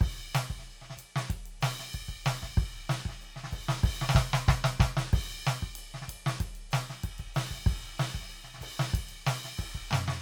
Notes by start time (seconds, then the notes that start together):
0.01 kick, crash
0.32 kick, snare, hi-hat pedal, crash
0.50 kick
0.59 snare
0.82 snare
0.90 snare
0.97 kick, hi-hat pedal, crash
1.16 snare
1.30 kick, crash
1.46 crash
1.61 kick, snare, hi-hat pedal, crash
1.80 snare
1.94 kick, crash
2.09 kick, crash
2.24 snare, hi-hat pedal, crash
2.42 kick, snare
2.57 kick, crash
2.89 snare, hi-hat pedal, crash
3.06 kick, snare
3.21 hi-hat pedal, crash
3.36 snare
3.44 snare
3.47 snare
3.51 kick, hi-hat pedal, crash
3.69 snare
3.84 kick, snare, hi-hat pedal, crash
3.91 snare
3.95 snare
4.02 snare
4.09 snare
4.15 kick, snare, hi-hat pedal
4.34 snare
4.47 kick, snare, hi-hat pedal
4.64 snare
4.80 kick, snare, hi-hat pedal
4.97 snare
5.13 kick, hi-hat pedal, crash
5.46 snare, hi-hat pedal
5.63 kick
5.76 hi-hat pedal, crash
5.94 snare
6.02 snare
6.09 kick, hi-hat pedal, crash
6.26 snare
6.40 kick, crash
6.55 crash
6.66 kick
6.71 snare, hi-hat pedal, crash
6.90 snare
7.04 kick, crash
7.18 kick, crash
7.34 snare, hi-hat pedal, crash
7.51 kick, snare
7.66 kick, crash
7.95 kick
7.99 snare, hi-hat pedal, crash
8.15 kick
8.22 snare
8.29 hi-hat pedal, crash
8.44 snare
8.54 snare
8.58 kick, snare, hi-hat pedal
8.63 crash
8.80 snare
8.94 kick, crash
9.09 crash
9.26 snare, hi-hat pedal, crash
9.45 snare
9.58 kick, crash
9.75 kick
9.91 snare, hi-hat pedal, mid tom
10.08 snare